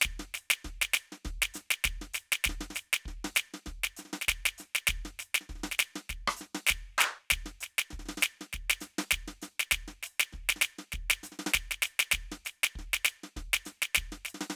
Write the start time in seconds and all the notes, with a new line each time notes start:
0.01 kick, snare
0.19 snare
0.34 snare, hi-hat pedal
0.50 snare
0.64 kick, snare
0.81 snare
0.93 snare, hi-hat pedal
1.12 snare
1.24 kick, snare
1.41 snare
1.54 snare, hi-hat pedal
1.70 snare
1.84 kick, snare
2.01 snare
2.13 snare, hi-hat pedal
2.32 snare
2.44 kick, snare
2.49 snare
2.60 snare
2.70 snare
2.74 snare, hi-hat pedal
2.92 snare
3.05 kick, snare
3.24 snare
3.35 snare, hi-hat pedal
3.53 snare
3.66 kick, snare
3.83 snare
3.96 snare, hi-hat pedal
4.05 snare
4.09 snare
4.13 snare
4.21 snare
4.28 kick, snare
4.45 snare
4.57 snare, hi-hat pedal
4.74 snare
4.87 kick, snare
4.94 kick
5.04 snare
5.19 snare, hi-hat pedal
5.34 snare
5.40 snare
5.49 kick, snare
5.55 snare
5.59 snare
5.63 snare
5.71 snare
5.78 snare, hi-hat pedal
5.95 snare
6.09 kick, snare
6.27 cross-stick
6.36 hi-hat pedal
6.40 snare
6.54 snare
6.66 snare
6.68 kick, snare
6.97 percussion, snare, hi-hat pedal
7.30 kick, snare
7.45 snare
7.60 snare, hi-hat pedal
7.78 snare
7.90 kick, snare
7.99 snare
8.05 snare
8.08 snare
8.17 snare, hi-hat pedal
8.22 snare
8.40 snare
8.52 kick, snare
8.69 snare
8.80 snare, hi-hat pedal
8.98 snare
9.10 kick, snare
9.27 snare
9.41 snare, hi-hat pedal
9.59 snare
9.71 kick, snare
9.87 snare
10.02 snare, hi-hat pedal
10.19 snare
10.32 kick, snare
10.48 snare
10.56 snare
10.61 snare, hi-hat pedal
10.78 snare
10.92 kick, snare
11.09 snare
11.23 snare, hi-hat pedal
11.31 snare
11.39 snare
11.46 snare
11.53 kick, snare
11.70 snare
11.82 snare, hi-hat pedal
11.99 snare
12.11 kick, snare
12.31 snare
12.45 snare, hi-hat pedal
12.63 snare
12.75 kick, snare
12.93 snare
13.04 snare, hi-hat pedal
13.23 snare
13.36 kick, snare
13.53 snare
13.65 snare, hi-hat pedal
13.81 snare
13.94 kick, snare
14.11 snare
14.24 snare, hi-hat pedal
14.34 snare
14.40 snare
14.49 snare